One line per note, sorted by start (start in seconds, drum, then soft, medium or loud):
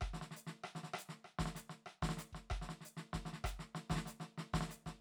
0.01 kick soft
0.01 cross-stick medium
0.14 snare soft
0.21 snare soft
0.31 snare soft
0.36 hi-hat pedal medium
0.47 snare soft
0.64 cross-stick medium
0.75 snare soft
0.83 snare soft
0.94 cross-stick medium
0.99 hi-hat pedal medium
1.09 snare soft
1.24 cross-stick soft
1.39 kick soft
1.39 snare medium
1.46 snare soft
1.55 snare soft
1.55 hi-hat pedal medium
1.70 snare soft
1.86 cross-stick soft
2.02 kick soft
2.02 snare medium
2.09 snare medium
2.17 snare soft
2.17 hi-hat pedal medium
2.33 kick soft
2.33 snare soft
2.50 kick soft
2.50 cross-stick medium
2.62 snare soft
2.69 snare soft
2.81 snare soft
2.85 hi-hat pedal medium
2.97 snare soft
3.13 kick soft
3.13 snare medium
3.25 snare soft
3.33 snare soft
3.44 kick soft
3.44 cross-stick medium
3.44 hi-hat pedal medium
3.59 snare soft
3.75 snare soft
3.90 kick soft
3.90 snare medium
3.96 snare medium
4.06 snare soft
4.06 hi-hat pedal medium
4.20 snare soft
4.38 snare soft
4.54 kick soft
4.54 snare medium
4.61 snare medium
4.68 snare soft
4.68 hi-hat pedal medium
4.86 kick soft
4.86 snare soft